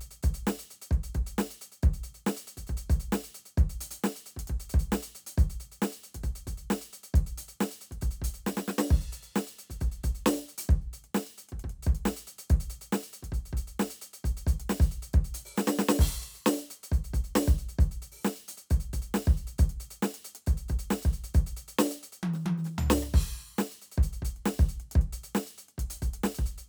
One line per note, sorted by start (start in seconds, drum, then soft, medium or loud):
0.01 closed hi-hat medium
0.23 closed hi-hat medium
0.23 kick loud
0.34 closed hi-hat medium
0.47 snare loud
0.59 closed hi-hat medium
0.71 closed hi-hat medium
0.82 closed hi-hat medium
0.91 kick loud
0.91 closed hi-hat soft
1.04 closed hi-hat medium
1.15 kick medium
1.15 closed hi-hat medium
1.27 closed hi-hat medium
1.38 snare loud
1.51 closed hi-hat medium
1.61 closed hi-hat medium
1.72 closed hi-hat medium
1.83 kick loud
1.83 closed hi-hat medium
1.94 closed hi-hat medium
2.04 closed hi-hat medium
2.15 closed hi-hat soft
2.27 snare loud
2.37 closed hi-hat medium
2.47 closed hi-hat medium
2.57 kick soft
2.67 closed hi-hat soft
2.67 kick medium
2.77 closed hi-hat medium
2.90 closed hi-hat medium
2.90 kick loud
3.13 snare loud
3.24 closed hi-hat medium
3.35 closed hi-hat medium
3.46 closed hi-hat medium
3.58 kick loud
3.58 closed hi-hat medium
3.70 closed hi-hat medium
3.81 closed hi-hat loud
3.91 closed hi-hat loud
4.04 snare loud
4.16 closed hi-hat medium
4.37 kick medium
4.37 closed hi-hat medium
4.48 kick medium
4.48 closed hi-hat medium
4.60 closed hi-hat medium
4.70 closed hi-hat medium
4.74 kick loud
4.79 closed hi-hat medium
4.92 snare loud
5.03 closed hi-hat medium
5.15 closed hi-hat medium
5.27 closed hi-hat medium
5.38 closed hi-hat medium
5.38 kick loud
5.50 closed hi-hat medium
5.60 closed hi-hat medium
5.72 closed hi-hat medium
5.82 snare loud
5.92 closed hi-hat medium
6.04 closed hi-hat medium
6.15 kick medium
6.15 closed hi-hat medium
6.24 closed hi-hat soft
6.24 kick medium
6.36 closed hi-hat medium
6.47 closed hi-hat medium
6.47 kick medium
6.58 closed hi-hat soft
6.70 snare loud
6.81 closed hi-hat medium
6.93 closed hi-hat medium
7.04 closed hi-hat medium
7.14 kick loud
7.14 closed hi-hat medium
7.27 closed hi-hat medium
7.38 closed hi-hat medium
7.49 closed hi-hat medium
7.61 snare loud
7.71 closed hi-hat medium
7.81 closed hi-hat medium
7.91 kick medium
7.91 closed hi-hat soft
8.02 closed hi-hat medium
8.02 kick medium
8.11 closed hi-hat medium
8.22 closed hi-hat loud
8.22 kick medium
8.34 closed hi-hat medium
8.47 snare loud
8.57 snare loud
8.68 snare loud
8.79 snare loud
8.90 kick loud
8.90 crash medium
9.01 closed hi-hat soft
9.13 closed hi-hat medium
9.23 closed hi-hat medium
9.34 kick soft
9.34 snare loud
9.47 closed hi-hat medium
9.59 closed hi-hat medium
9.70 closed hi-hat medium
9.70 kick medium
9.81 closed hi-hat medium
9.81 kick medium
9.92 closed hi-hat soft
10.04 closed hi-hat medium
10.04 kick medium
10.15 closed hi-hat soft
10.26 snare loud
10.38 closed hi-hat soft
10.49 closed hi-hat medium
10.58 closed hi-hat loud
10.69 kick loud
10.69 closed hi-hat soft
10.81 closed hi-hat soft
10.93 closed hi-hat medium
11.04 closed hi-hat soft
11.15 snare loud
11.27 closed hi-hat soft
11.38 closed hi-hat medium
11.49 kick medium
11.49 closed hi-hat soft
11.60 closed hi-hat soft
11.64 kick medium
11.70 closed hi-hat soft
11.83 closed hi-hat medium
11.83 kick loud
11.95 closed hi-hat medium
12.06 snare loud
12.17 closed hi-hat medium
12.27 closed hi-hat medium
12.39 closed hi-hat medium
12.50 kick loud
12.50 closed hi-hat medium
12.60 closed hi-hat medium
12.70 closed hi-hat medium
12.81 closed hi-hat medium
12.93 snare loud
13.03 closed hi-hat medium
13.13 closed hi-hat medium
13.23 kick medium
13.23 closed hi-hat medium
13.32 closed hi-hat medium
13.32 kick medium
13.46 closed hi-hat medium
13.53 kick medium
13.57 closed hi-hat medium
13.68 closed hi-hat medium
13.80 snare loud
13.90 closed hi-hat medium
14.02 closed hi-hat medium
14.14 closed hi-hat medium
14.25 closed hi-hat medium
14.25 kick loud
14.37 closed hi-hat medium
14.47 closed hi-hat medium
14.47 kick loud
14.60 closed hi-hat medium
14.70 snare loud
14.80 closed hi-hat medium
14.80 kick loud
14.91 closed hi-hat medium
15.03 closed hi-hat medium
15.14 kick loud
15.14 closed hi-hat medium
15.25 closed hi-hat medium
15.34 closed hi-hat loud
15.45 open hi-hat medium
15.56 snare loud
15.56 hi-hat pedal soft
15.68 snare loud
15.79 snare loud
15.89 snare loud
15.99 kick loud
15.99 crash loud
16.13 closed hi-hat soft
16.22 closed hi-hat medium
16.35 closed hi-hat soft
16.46 snare loud
16.58 closed hi-hat medium
16.70 closed hi-hat medium
16.83 closed hi-hat medium
16.92 closed hi-hat soft
16.92 kick loud
17.04 closed hi-hat medium
17.14 closed hi-hat medium
17.14 kick loud
17.24 closed hi-hat soft
17.36 snare loud
17.48 closed hi-hat medium
17.48 kick loud
17.58 closed hi-hat soft
17.69 closed hi-hat medium
17.79 closed hi-hat soft
17.79 kick loud
17.91 closed hi-hat medium
18.02 closed hi-hat medium
18.12 open hi-hat medium
18.25 snare loud
18.25 hi-hat pedal soft
18.36 closed hi-hat medium
18.48 closed hi-hat medium
18.58 closed hi-hat medium
18.71 closed hi-hat medium
18.71 kick loud
18.80 closed hi-hat medium
18.93 closed hi-hat medium
18.93 kick medium
19.02 closed hi-hat medium
19.14 snare loud
19.26 kick loud
19.26 closed hi-hat soft
19.37 closed hi-hat soft
19.47 closed hi-hat medium
19.59 closed hi-hat medium
19.59 kick loud
19.70 closed hi-hat medium
19.80 closed hi-hat medium
19.91 closed hi-hat medium
20.03 snare loud
20.14 closed hi-hat medium
20.25 closed hi-hat medium
20.35 closed hi-hat medium
20.47 closed hi-hat medium
20.47 kick loud
20.57 closed hi-hat medium
20.69 closed hi-hat medium
20.69 kick loud
20.79 closed hi-hat medium
20.91 snare loud
21.02 closed hi-hat medium
21.02 kick loud
21.13 closed hi-hat medium
21.24 closed hi-hat medium
21.34 closed hi-hat medium
21.34 kick loud
21.47 closed hi-hat medium
21.68 closed hi-hat medium
21.79 snare loud
21.91 closed hi-hat medium
22.03 closed hi-hat medium
22.13 closed hi-hat medium
22.23 high tom loud
22.34 snare soft
22.46 high tom loud
22.58 snare soft
22.65 snare soft
22.65 hi-hat pedal soft
22.78 floor tom loud
22.85 kick soft
22.90 snare loud
23.03 cross-stick soft
23.14 kick loud
23.14 crash medium
23.23 closed hi-hat soft
23.38 closed hi-hat soft
23.48 closed hi-hat soft
23.59 snare loud
23.71 closed hi-hat soft
23.82 closed hi-hat medium
23.92 closed hi-hat medium
23.98 kick loud
24.03 closed hi-hat medium
24.22 closed hi-hat medium
24.22 kick medium
24.36 closed hi-hat soft
24.46 snare loud
24.59 closed hi-hat soft
24.59 kick loud
24.69 closed hi-hat medium
24.80 closed hi-hat soft
24.92 kick loud
24.92 closed hi-hat medium
25.01 closed hi-hat soft
25.13 closed hi-hat medium
25.24 closed hi-hat medium
25.35 snare loud
25.47 closed hi-hat medium
25.58 closed hi-hat medium
25.69 closed hi-hat soft
25.78 kick medium
25.78 closed hi-hat medium
25.90 closed hi-hat loud
26.02 closed hi-hat medium
26.02 kick medium
26.14 closed hi-hat medium
26.24 snare loud
26.35 closed hi-hat medium
26.39 kick medium
26.46 closed hi-hat medium
26.58 closed hi-hat medium